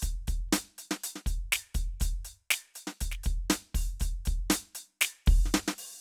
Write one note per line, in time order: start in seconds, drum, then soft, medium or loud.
0.01 closed hi-hat medium
0.01 kick medium
0.01 hi-hat pedal soft
0.28 closed hi-hat medium
0.28 kick medium
0.49 kick soft
0.49 snare loud
0.53 closed hi-hat loud
0.78 closed hi-hat medium
0.91 snare medium
1.04 closed hi-hat loud
1.16 snare soft
1.26 closed hi-hat medium
1.26 kick medium
1.52 closed hi-hat loud
1.52 snare loud
1.75 closed hi-hat medium
1.75 kick medium
2.00 closed hi-hat medium
2.00 kick medium
2.00 hi-hat pedal medium
2.25 closed hi-hat medium
2.51 closed hi-hat loud
2.51 snare loud
2.74 closed hi-hat medium
2.74 hi-hat pedal soft
2.87 snare medium
3.01 closed hi-hat medium
3.01 kick medium
3.12 snare soft
3.24 closed hi-hat medium
3.24 kick medium
3.50 closed hi-hat medium
3.50 snare loud
3.75 open hi-hat medium
3.75 kick medium
4.00 closed hi-hat medium
4.00 kick medium
4.00 hi-hat pedal medium
4.26 closed hi-hat medium
4.26 kick medium
4.50 closed hi-hat loud
4.50 snare loud
4.75 closed hi-hat medium
5.01 closed hi-hat loud
5.01 snare loud
5.26 open hi-hat medium
5.26 kick loud
5.46 snare soft
5.54 snare loud
5.68 snare medium
5.78 open hi-hat medium